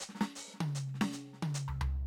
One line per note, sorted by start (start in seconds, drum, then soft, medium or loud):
0.00 hi-hat pedal medium
0.09 snare soft
0.15 snare soft
0.21 snare medium
0.35 hi-hat pedal medium
0.48 snare soft
0.54 snare soft
0.60 high tom medium
0.75 hi-hat pedal medium
0.87 snare soft
0.94 snare soft
1.01 snare medium
1.12 hi-hat pedal loud
1.27 snare soft
1.33 snare soft
1.42 high tom medium
1.54 hi-hat pedal loud
1.68 floor tom medium
1.81 floor tom loud